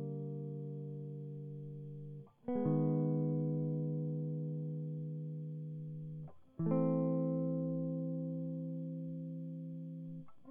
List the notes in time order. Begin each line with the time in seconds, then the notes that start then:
2.48 B3
2.56 G#3
2.66 D#3
6.60 E3
6.67 A3
6.71 C4